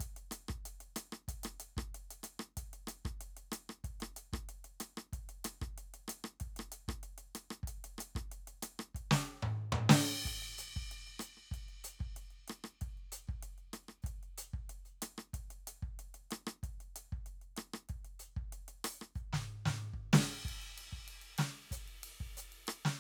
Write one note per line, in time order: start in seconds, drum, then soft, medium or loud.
0.01 kick medium
0.01 closed hi-hat medium
0.17 closed hi-hat soft
0.32 cross-stick medium
0.32 closed hi-hat medium
0.49 kick medium
0.49 cross-stick medium
0.66 closed hi-hat medium
0.81 closed hi-hat soft
0.97 cross-stick medium
0.97 closed hi-hat medium
1.13 cross-stick medium
1.29 kick medium
1.29 closed hi-hat medium
1.44 cross-stick medium
1.44 closed hi-hat medium
1.61 closed hi-hat medium
1.78 kick medium
1.78 cross-stick medium
1.95 closed hi-hat soft
2.11 closed hi-hat medium
2.24 cross-stick soft
2.24 closed hi-hat medium
2.40 cross-stick medium
2.58 kick medium
2.58 closed hi-hat medium
2.74 closed hi-hat soft
2.88 cross-stick medium
2.88 closed hi-hat medium
3.06 kick medium
3.06 cross-stick medium
3.22 closed hi-hat soft
3.38 closed hi-hat soft
3.53 cross-stick medium
3.53 closed hi-hat medium
3.70 cross-stick medium
3.85 kick medium
3.85 closed hi-hat soft
4.01 cross-stick medium
4.01 closed hi-hat soft
4.17 closed hi-hat medium
4.34 kick medium
4.34 cross-stick medium
4.50 closed hi-hat soft
4.65 closed hi-hat soft
4.81 cross-stick medium
4.81 closed hi-hat medium
4.98 cross-stick medium
5.14 kick medium
5.14 closed hi-hat soft
5.30 closed hi-hat soft
5.45 cross-stick medium
5.45 closed hi-hat medium
5.62 kick medium
5.62 cross-stick soft
5.79 closed hi-hat soft
5.95 closed hi-hat soft
6.09 cross-stick medium
6.09 closed hi-hat medium
6.25 cross-stick medium
6.41 kick medium
6.41 closed hi-hat soft
6.57 cross-stick medium
6.57 closed hi-hat soft
6.73 closed hi-hat medium
6.89 kick medium
6.89 cross-stick medium
7.04 closed hi-hat soft
7.19 closed hi-hat soft
7.36 cross-stick medium
7.36 closed hi-hat medium
7.51 cross-stick medium
7.64 kick medium
7.68 closed hi-hat medium
7.85 closed hi-hat soft
7.99 cross-stick medium
7.99 closed hi-hat medium
8.16 kick medium
8.16 cross-stick medium
8.32 closed hi-hat soft
8.48 closed hi-hat soft
8.63 cross-stick medium
8.63 closed hi-hat medium
8.80 cross-stick medium
8.95 kick medium
8.95 closed hi-hat soft
9.12 snare loud
9.26 closed hi-hat soft
9.43 high tom medium
9.73 high tom loud
9.90 snare loud
9.90 crash medium
10.26 kick medium
10.26 closed hi-hat soft
10.43 closed hi-hat soft
10.59 closed hi-hat medium
10.77 kick medium
10.77 snare soft
10.92 closed hi-hat soft
11.08 closed hi-hat soft
11.20 closed hi-hat medium
11.20 cross-stick medium
11.38 cross-stick soft
11.52 kick medium
11.52 closed hi-hat soft
11.69 closed hi-hat soft
11.85 closed hi-hat medium
12.00 kick medium
12.00 cross-stick soft
12.17 closed hi-hat soft
12.31 closed hi-hat soft
12.49 cross-stick medium
12.49 closed hi-hat soft
12.65 cross-stick medium
12.82 kick medium
12.82 closed hi-hat soft
12.98 closed hi-hat soft
13.13 closed hi-hat medium
13.28 kick medium
13.28 cross-stick soft
13.43 closed hi-hat soft
13.59 closed hi-hat soft
13.74 cross-stick medium
13.74 closed hi-hat soft
13.89 cross-stick soft
14.03 kick medium
14.03 hi-hat pedal soft
14.07 closed hi-hat soft
14.24 closed hi-hat soft
14.39 closed hi-hat medium
14.54 kick medium
14.70 closed hi-hat soft
14.86 closed hi-hat soft
15.03 cross-stick medium
15.03 closed hi-hat medium
15.19 cross-stick medium
15.34 kick medium
15.34 closed hi-hat soft
15.51 closed hi-hat soft
15.68 closed hi-hat medium
15.83 kick medium
16.00 closed hi-hat soft
16.15 closed hi-hat soft
16.32 cross-stick medium
16.32 closed hi-hat soft
16.48 cross-stick medium
16.64 kick medium
16.64 closed hi-hat soft
16.81 closed hi-hat soft
16.97 closed hi-hat medium
17.13 kick medium
17.27 closed hi-hat soft
17.42 closed hi-hat soft
17.57 cross-stick medium
17.57 closed hi-hat soft
17.74 cross-stick medium
17.90 kick medium
17.90 closed hi-hat soft
18.05 closed hi-hat soft
18.20 closed hi-hat medium
18.37 kick medium
18.53 closed hi-hat soft
18.69 closed hi-hat soft
18.85 cross-stick medium
18.85 open hi-hat medium
19.02 cross-stick medium
19.16 kick medium
19.16 hi-hat pedal soft
19.34 snare medium
19.34 high tom medium
19.66 snare medium
19.66 high tom medium
19.94 kick medium
20.14 snare loud
20.14 crash medium
20.46 kick medium
20.46 ride medium
20.63 ride soft
20.79 ride medium
20.93 kick soft
21.09 ride medium
21.22 ride soft
21.39 snare medium
21.39 ride medium
21.72 kick medium
21.72 hi-hat pedal medium
21.72 ride soft
21.89 ride soft
22.04 ride medium
22.21 kick medium
22.38 hi-hat pedal medium
22.38 ride soft
22.53 ride soft
22.68 cross-stick medium
22.68 ride medium
22.86 snare medium